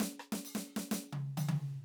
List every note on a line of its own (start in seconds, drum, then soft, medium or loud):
0.00 snare loud
0.00 hi-hat pedal soft
0.19 cross-stick medium
0.32 snare medium
0.45 hi-hat pedal medium
0.55 snare medium
0.76 snare medium
0.91 snare loud
0.91 hi-hat pedal medium
1.12 high tom loud
1.37 hi-hat pedal medium
1.37 high tom loud
1.48 high tom loud